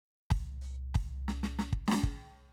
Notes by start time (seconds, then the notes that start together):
0.30 open hi-hat, kick, floor tom
0.61 hi-hat pedal
0.94 open hi-hat, kick, floor tom
1.28 snare
1.43 snare
1.59 snare
1.73 kick
1.86 snare, hi-hat pedal
1.92 snare
2.04 kick